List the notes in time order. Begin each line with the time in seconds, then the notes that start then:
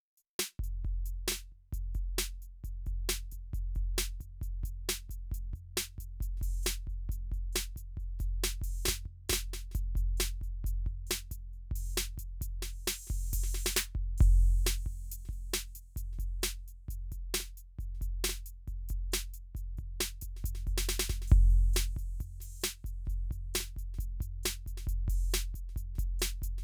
0.17 closed hi-hat
0.39 snare
0.59 kick
0.64 closed hi-hat
0.85 kick, closed hi-hat
1.06 closed hi-hat
1.28 snare
1.32 snare
1.52 kick
1.73 closed hi-hat, kick
1.95 closed hi-hat, kick
2.18 snare
2.42 closed hi-hat
2.64 closed hi-hat, kick
2.86 closed hi-hat, kick
3.09 snare
3.32 closed hi-hat, kick
3.53 closed hi-hat, kick
3.75 closed hi-hat, kick
3.98 snare
4.21 kick, closed hi-hat
4.42 closed hi-hat, kick
4.64 closed hi-hat, kick
4.89 snare
5.10 closed hi-hat, kick
5.32 closed hi-hat, kick
5.53 kick, closed hi-hat
5.77 snare
5.98 closed hi-hat, kick
6.21 closed hi-hat, kick, snare
6.37 snare
6.41 open hi-hat, kick
6.63 snare, hi-hat pedal
6.87 kick, closed hi-hat
7.09 closed hi-hat, kick, snare
7.32 kick, closed hi-hat
7.53 snare, hi-hat pedal
7.76 closed hi-hat, kick
7.97 kick, closed hi-hat
8.19 closed hi-hat, kick, snare
8.44 snare
8.62 open hi-hat, kick
8.85 kick, snare, hi-hat pedal
8.88 snare
9.06 kick
9.29 kick, snare, hi-hat pedal
9.33 snare
9.53 snare
9.71 closed hi-hat, kick, snare
9.95 closed hi-hat, kick
10.17 snare, hi-hat pedal
10.41 kick, closed hi-hat
10.64 closed hi-hat, kick
10.86 kick, closed hi-hat
11.07 snare, hi-hat pedal
11.31 closed hi-hat, kick
11.53 closed hi-hat
11.71 kick
11.76 open hi-hat
11.93 hi-hat pedal
11.97 snare
12.18 closed hi-hat, kick
12.41 closed hi-hat, kick
12.62 open hi-hat, snare
12.87 open hi-hat, snare
13.07 open hi-hat, kick, snare
13.26 snare
13.33 open hi-hat, kick
13.43 snare
13.54 snare
13.66 snare
13.72 snare, hi-hat pedal
13.95 kick
14.18 kick, hi-hat pedal
14.22 crash
14.41 closed hi-hat
14.66 closed hi-hat, snare
14.86 kick
15.12 closed hi-hat
15.25 kick, snare
15.33 closed hi-hat
15.54 snare
15.75 closed hi-hat, kick
15.96 closed hi-hat, kick
16.13 snare
16.19 closed hi-hat, kick
16.42 snare, hi-hat pedal
16.68 closed hi-hat
16.88 closed hi-hat, kick
17.12 closed hi-hat, kick
17.34 snare
17.40 snare
17.57 closed hi-hat
17.79 kick, closed hi-hat
17.95 snare
18.01 closed hi-hat, kick
18.24 snare, hi-hat pedal
18.29 snare
18.46 closed hi-hat
18.68 kick, closed hi-hat
18.89 closed hi-hat, kick
19.12 snare, hi-hat pedal
19.34 closed hi-hat
19.55 closed hi-hat, kick
19.77 kick, closed hi-hat
20.00 snare, hi-hat pedal
20.21 closed hi-hat, kick
20.36 snare
20.44 closed hi-hat, kick
20.55 snare
20.67 kick, open hi-hat
20.78 snare
20.89 snare, hi-hat pedal
20.99 snare
21.09 kick, snare
21.22 snare
21.27 hi-hat pedal
21.32 kick, crash
21.50 closed hi-hat
21.73 snare, hi-hat pedal
21.97 kick, closed hi-hat
22.20 kick, closed hi-hat
22.40 open hi-hat, snare
22.61 snare, hi-hat pedal
22.84 kick, closed hi-hat
23.05 kick, snare
23.10 closed hi-hat
23.31 closed hi-hat, kick
23.54 snare, hi-hat pedal
23.60 snare
23.77 kick, closed hi-hat
23.94 snare
23.99 closed hi-hat, kick
24.21 closed hi-hat, kick
24.43 snare, hi-hat pedal
24.66 kick, closed hi-hat
24.77 snare
24.87 closed hi-hat, kick
25.08 open hi-hat, kick
25.32 snare, hi-hat pedal
25.54 kick, closed hi-hat
25.69 snare
25.76 closed hi-hat, kick
25.95 closed hi-hat, kick, snare
26.19 snare, hi-hat pedal
26.42 closed hi-hat, kick
26.58 snare